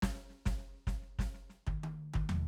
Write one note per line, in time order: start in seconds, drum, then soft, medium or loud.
0.02 kick soft
0.02 snare medium
0.15 snare soft
0.30 snare soft
0.46 kick medium
0.46 snare medium
0.58 snare soft
0.74 snare soft
0.87 kick medium
0.87 snare soft
1.02 snare soft
1.19 kick medium
1.19 snare medium
1.34 snare soft
1.50 snare soft
1.67 kick medium
1.67 high tom medium
1.84 high tom medium
2.14 kick medium
2.14 high tom medium
2.29 floor tom loud